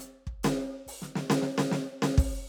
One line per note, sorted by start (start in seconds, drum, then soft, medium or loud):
0.01 closed hi-hat medium
0.28 kick medium
0.44 closed hi-hat medium
0.44 snare loud
0.87 open hi-hat loud
0.87 kick soft
1.03 snare medium
1.16 snare medium
1.31 snare loud
1.43 snare medium
1.59 snare loud
1.73 snare loud
2.03 snare loud
2.19 open hi-hat medium
2.19 kick loud